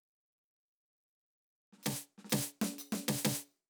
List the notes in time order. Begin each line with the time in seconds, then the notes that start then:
1.72 snare
1.78 snare
1.83 snare, hi-hat pedal
2.18 snare
2.24 snare
2.30 snare, hi-hat pedal
2.61 snare
2.78 hi-hat pedal
2.92 snare
3.08 snare
3.25 snare, hi-hat pedal